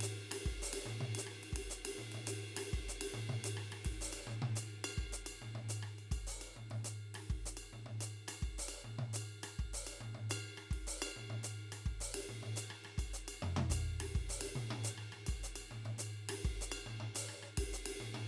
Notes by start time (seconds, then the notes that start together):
0.01 hi-hat pedal, ride
0.32 cross-stick, ride
0.46 kick
0.62 hi-hat pedal
0.73 ride
0.86 high tom
1.01 high tom
1.15 hi-hat pedal, ride
1.27 cross-stick
1.44 ride
1.53 kick, ride
1.70 hi-hat pedal
1.85 ride
1.99 high tom
2.12 high tom, ride
2.27 hi-hat pedal, ride
2.57 cross-stick, ride
2.73 kick
2.89 hi-hat pedal
3.01 ride
3.14 high tom
3.30 high tom
3.45 hi-hat pedal, ride
3.57 cross-stick
3.72 cross-stick, ride
3.85 kick, ride
4.01 hi-hat pedal
4.13 ride bell
4.27 high tom
4.42 high tom
4.56 hi-hat pedal, ride bell
4.85 ride bell
4.98 kick
5.11 kick, hi-hat pedal
5.27 ride bell
5.42 high tom
5.55 high tom
5.69 hi-hat pedal, ride bell
5.83 cross-stick
5.99 ride bell
6.12 kick, ride bell
6.27 hi-hat pedal
6.42 ride bell
6.57 high tom
6.71 high tom, ride
6.85 hi-hat pedal, ride bell
7.15 cross-stick, ride
7.30 kick
7.46 hi-hat pedal
7.57 ride bell
7.73 high tom
7.86 high tom
8.01 hi-hat pedal, ride bell
8.28 cross-stick, ride bell
8.43 kick
8.59 hi-hat pedal
8.69 ride bell
8.85 high tom
8.99 high tom
9.14 hi-hat pedal, ride bell
9.44 cross-stick, ride bell
9.59 kick
9.74 hi-hat pedal
9.87 ride bell
10.01 high tom
10.15 high tom
10.30 hi-hat pedal, ride bell
10.58 cross-stick, ride bell
10.71 kick, ride
10.87 hi-hat pedal
11.02 ride bell
11.17 high tom
11.30 high tom
11.44 hi-hat pedal, ride bell
11.72 cross-stick, ride bell
11.86 kick
12.01 hi-hat pedal
12.15 ride
12.29 high tom
12.43 high tom
12.56 hi-hat pedal, ride bell
12.71 cross-stick
12.84 cross-stick, ride bell
12.98 kick, ride bell
13.14 hi-hat pedal
13.28 ride bell
13.43 mid tom
13.57 mid tom
13.70 kick, hi-hat pedal, ride bell
14.00 cross-stick, ride
14.15 kick
14.30 hi-hat pedal
14.41 ride
14.56 high tom
14.71 high tom
14.84 hi-hat pedal, ride bell
14.98 cross-stick
15.12 cross-stick, ride bell
15.27 kick, ride bell
15.44 hi-hat pedal
15.56 ride bell
15.71 high tom
15.85 open hi-hat, high tom, ride bell
15.99 hi-hat pedal, ride bell
16.29 cross-stick, hi-hat pedal, ride
16.45 kick
16.61 hi-hat pedal
16.72 ride bell
16.87 high tom
17.00 high tom
17.15 hi-hat pedal, ride bell
17.29 cross-stick
17.43 cross-stick, ride
17.58 kick, ride
17.74 hi-hat pedal
17.86 ride
18.01 high tom
18.15 high tom, ride